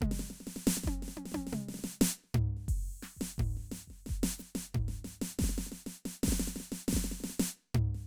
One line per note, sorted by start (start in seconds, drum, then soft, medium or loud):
0.01 kick soft
0.01 mid tom loud
0.10 kick soft
0.10 snare medium
0.19 snare soft
0.30 snare soft
0.40 snare soft
0.47 snare soft
0.56 snare soft
0.67 snare loud
0.83 kick soft
0.83 snare soft
0.83 high tom medium
1.02 snare soft
1.08 snare soft
1.17 high tom medium
1.25 snare soft
1.32 snare soft
1.32 high tom loud
1.36 kick soft
1.47 snare soft
1.53 snare soft
1.53 mid tom loud
1.68 snare soft
1.74 snare soft
1.79 snare soft
1.84 snare medium
2.01 snare loud
2.24 snare soft
2.34 kick soft
2.34 floor tom loud
2.57 snare soft
2.68 kick medium
2.68 crash medium
3.02 snare soft
3.17 kick soft
3.21 snare medium
3.38 kick soft
3.38 floor tom medium
3.57 snare soft
3.71 snare medium
3.71 hi-hat pedal soft
3.87 kick soft
3.87 snare soft
4.06 kick soft
4.06 snare soft
4.23 snare medium
4.37 snare soft
4.37 hi-hat pedal medium
4.55 kick soft
4.55 snare medium
4.74 kick soft
4.74 floor tom medium
4.88 snare soft
5.04 snare soft
5.04 hi-hat pedal soft
5.21 snare medium
5.39 kick medium
5.39 snare medium
5.44 snare medium
5.49 kick soft
5.49 snare soft
5.58 snare medium
5.66 snare soft
5.72 snare soft
5.86 snare soft
6.05 snare medium
6.23 kick soft
6.23 snare medium
6.28 snare medium
6.32 snare medium
6.39 snare medium
6.47 snare soft
6.56 snare soft
6.60 snare soft
6.72 snare medium
6.88 snare medium
6.93 kick soft
6.93 snare medium
6.96 snare medium
7.04 snare medium
7.11 snare soft
7.20 snare soft
7.24 snare medium
7.29 snare soft
7.39 snare loud
7.74 floor tom loud
7.94 snare soft